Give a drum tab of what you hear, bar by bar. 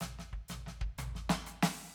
HH |p--p--p--po-|
SD |oo-oo-rooro-|
FT |oo-oo-o-----|
BD |--o--o------|